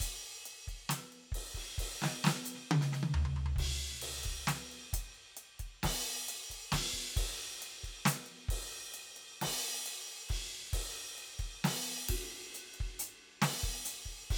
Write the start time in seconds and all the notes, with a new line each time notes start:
0.01 closed hi-hat, kick
0.23 closed hi-hat
0.46 closed hi-hat
0.68 kick, closed hi-hat
0.90 snare, closed hi-hat
1.12 closed hi-hat
1.32 kick, crash
1.55 kick, ride
1.78 kick, crash
2.02 snare
2.04 snare
2.24 snare
2.27 snare
2.45 hi-hat pedal
2.55 snare
2.71 high tom
2.82 snare
2.93 snare
3.03 closed hi-hat, high tom
3.14 floor tom
3.26 floor tom
3.37 floor tom
3.46 floor tom
3.56 kick, ride
4.02 crash
4.24 kick, closed hi-hat
4.48 snare, closed hi-hat
4.72 closed hi-hat
4.93 kick, closed hi-hat
5.15 closed hi-hat
5.37 closed hi-hat
5.60 kick, closed hi-hat
5.83 kick, snare, crash
6.05 closed hi-hat
6.29 closed hi-hat
6.50 kick, closed hi-hat
6.72 kick, snare, hi-hat pedal, ride
6.94 kick
7.11 hi-hat pedal
7.17 kick, snare, crash
7.62 closed hi-hat
7.74 snare
7.84 kick, closed hi-hat
8.06 closed hi-hat, snare
8.26 closed hi-hat
8.45 kick, snare
8.51 crash
8.72 closed hi-hat
8.94 closed hi-hat
9.17 closed hi-hat
9.42 snare, crash
9.47 kick
9.64 closed hi-hat
9.86 closed hi-hat
10.08 closed hi-hat
10.29 kick, ride
10.60 snare
10.64 snare
10.70 kick, snare, crash
10.93 closed hi-hat
11.18 closed hi-hat
11.40 kick, closed hi-hat
11.65 snare, crash
11.86 closed hi-hat
12.09 kick, ride
12.55 closed hi-hat
12.74 closed hi-hat
12.81 kick
13.00 closed hi-hat
13.42 snare, crash
13.64 kick
13.85 closed hi-hat
14.06 kick
14.31 kick, ride